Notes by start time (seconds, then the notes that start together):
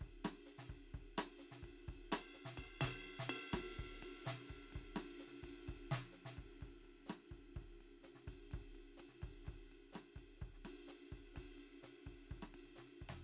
0.01 kick, ride
0.07 kick
0.25 cross-stick, ride
0.46 hi-hat pedal
0.59 snare
0.70 kick, ride
0.75 kick
0.94 kick, ride
1.00 kick
1.18 cross-stick, ride
1.39 hi-hat pedal
1.43 ride
1.52 snare
1.63 kick, ride
1.68 kick
1.88 kick, ride
1.94 kick
2.12 cross-stick, ride bell
2.34 hi-hat pedal, ride
2.46 snare
2.58 kick, ride bell
2.64 kick
2.81 kick, snare, ride bell
3.07 ride
3.20 snare
3.29 hi-hat pedal, ride bell
3.54 kick, cross-stick, ride
3.59 kick
3.79 kick, ride
3.85 kick
3.96 snare
4.03 ride
4.25 snare, hi-hat pedal, ride
4.50 kick, ride
4.55 kick
4.61 snare
4.70 hi-hat pedal, ride
4.76 kick
4.81 kick
4.96 cross-stick, ride
5.20 hi-hat pedal
5.28 snare
5.32 snare
5.43 kick, ride
5.48 kick
5.68 kick, ride
5.74 kick
5.92 snare, ride
6.13 hi-hat pedal, ride
6.26 snare
6.38 kick, ride
6.43 kick
6.61 kick, ride
6.68 kick
6.85 ride
7.06 cross-stick, hi-hat pedal
7.10 ride
7.31 kick, ride
7.37 kick
7.56 kick, ride
7.62 kick
7.68 snare
7.77 snare, ride
8.04 hi-hat pedal, ride
8.15 snare
8.28 kick, ride
8.33 kick
8.52 kick, ride
8.60 kick
8.75 ride
8.98 hi-hat pedal, ride
9.09 snare
9.22 kick, ride
9.29 kick
9.45 kick, snare, ride
9.54 kick
9.72 ride
9.93 cross-stick, snare, hi-hat pedal, ride
10.16 kick, ride
10.21 kick
10.37 hi-hat pedal
10.42 kick, ride
10.48 kick
10.54 snare
10.65 cross-stick, ride
10.88 hi-hat pedal, ride
11.12 kick, ride
11.18 kick
11.34 kick, snare, hi-hat pedal, ride
11.58 ride
11.83 snare, hi-hat pedal, ride
12.07 kick, ride
12.12 kick
12.31 kick, ride
12.37 kick
12.42 cross-stick, snare
12.55 ride
12.65 snare
12.76 snare, hi-hat pedal, ride
13.02 kick, ride
13.07 kick, snare, mid tom